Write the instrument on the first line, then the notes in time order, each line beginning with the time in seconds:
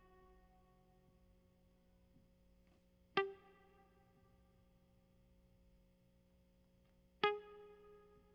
electric guitar
3.18 G4
7.24 G#4